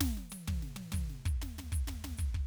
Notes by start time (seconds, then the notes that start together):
0.01 kick, snare
0.18 snare
0.30 hi-hat pedal, high tom
0.48 kick, high tom
0.63 snare
0.77 high tom
0.92 kick, hi-hat pedal, high tom
1.10 snare
1.26 kick, hi-hat pedal
1.42 snare, floor tom
1.59 snare, floor tom
1.73 kick, hi-hat pedal
1.88 snare, floor tom
2.05 snare, floor tom
2.18 kick, hi-hat pedal
2.35 kick